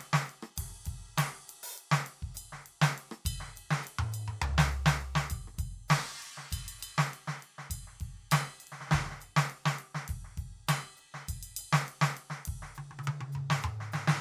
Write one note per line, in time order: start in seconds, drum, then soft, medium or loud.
0.01 ride medium
0.13 snare loud
0.25 hi-hat pedal medium
0.30 ride soft
0.43 cross-stick medium
0.56 kick soft
0.56 snare soft
0.56 hi-hat pedal medium
0.56 ride loud
0.70 cross-stick soft
0.85 kick soft
0.85 hi-hat pedal medium
0.85 ride medium
0.95 kick soft
1.17 snare loud
1.17 hi-hat pedal medium
1.17 ride loud
1.25 snare soft
1.47 hi-hat pedal medium
1.47 ride medium
1.63 open hi-hat loud
1.74 hi-hat pedal soft
1.78 ride medium
1.92 snare loud
2.07 ride medium
2.23 kick soft
2.35 hi-hat pedal loud
2.35 ride bell medium
2.53 snare soft
2.61 hi-hat pedal soft
2.66 ride medium
2.82 snare loud
2.93 hi-hat pedal medium
2.98 ride medium
3.12 cross-stick medium
3.25 kick medium
3.25 hi-hat pedal loud
3.25 ride bell loud
3.32 kick soft
3.36 kick soft
3.40 snare soft
3.49 kick soft
3.56 hi-hat pedal medium
3.56 ride medium
3.71 snare loud
3.83 hi-hat pedal medium
3.87 ride medium
3.99 mid tom loud
4.12 hi-hat pedal medium
4.12 ride bell medium
4.28 mid tom medium
4.42 hi-hat pedal medium
4.42 floor tom loud
4.58 snare loud
4.71 hi-hat pedal medium
4.86 snare loud
5.00 floor tom soft
5.00 hi-hat pedal medium
5.15 snare loud
5.30 kick soft
5.30 hi-hat pedal loud
5.30 ride bell medium
5.38 kick soft
5.40 kick soft
5.48 cross-stick soft
5.54 cross-stick soft
5.54 snare soft
5.54 hi-hat pedal medium
5.59 kick medium
5.59 ride bell medium
5.65 kick soft
5.68 kick soft
5.88 snare loud
5.88 hi-hat pedal medium
5.88 crash loud
5.97 snare medium
6.18 hi-hat pedal medium
6.23 ride soft
6.38 snare soft
6.50 kick soft
6.50 snare soft
6.50 hi-hat pedal medium
6.50 ride bell loud
6.57 kick soft
6.57 snare soft
6.68 ride bell medium
6.79 hi-hat pedal medium
6.83 ride bell loud
6.98 snare loud
7.09 hi-hat pedal medium
7.14 ride medium
7.28 snare medium
7.39 hi-hat pedal soft
7.39 ride soft
7.59 snare soft
7.70 kick soft
7.70 hi-hat pedal medium
7.70 ride bell medium
7.87 snare soft
8.00 kick soft
8.00 hi-hat pedal medium
8.00 ride soft
8.31 snare loud
8.31 hi-hat pedal medium
8.31 ride bell loud
8.41 snare soft
8.60 hi-hat pedal medium
8.60 ride bell soft
8.67 ride soft
8.72 snare soft
8.81 snare soft
8.87 snare soft
8.91 kick soft
8.91 snare loud
8.91 hi-hat pedal medium
9.00 kick soft
9.02 kick soft
9.02 snare soft
9.11 snare soft
9.21 hi-hat pedal medium
9.21 ride bell soft
9.37 snare loud
9.48 hi-hat pedal medium
9.48 ride soft
9.66 snare loud
9.78 hi-hat pedal medium
9.78 ride medium
9.95 snare medium
10.08 kick soft
10.08 hi-hat pedal medium
10.08 ride medium
10.19 kick soft
10.25 snare soft
10.31 snare soft
10.38 kick soft
10.38 hi-hat pedal medium
10.38 ride soft
10.68 snare loud
10.68 hi-hat pedal medium
10.68 ride bell loud
10.97 hi-hat pedal medium
10.97 ride soft
11.14 snare medium
11.28 kick soft
11.28 hi-hat pedal medium
11.28 ride bell medium
11.37 kick soft
11.43 ride bell medium
11.57 hi-hat pedal medium
11.57 ride bell loud
11.73 snare loud
11.86 hi-hat pedal medium
11.86 ride medium
12.02 snare loud
12.16 hi-hat pedal medium
12.16 ride medium
12.30 snare medium
12.46 kick soft
12.46 hi-hat pedal medium
12.46 ride medium
12.57 kick soft
12.62 snare soft
12.75 hi-hat pedal medium
12.75 high tom medium
12.91 high tom medium
12.99 high tom medium
13.03 hi-hat pedal medium
13.08 high tom loud
13.21 high tom loud
13.32 hi-hat pedal medium
13.32 mid tom medium
13.50 snare loud
13.62 hi-hat pedal medium
13.62 mid tom loud
13.81 snare soft
13.92 snare medium
13.92 hi-hat pedal loud
14.08 snare loud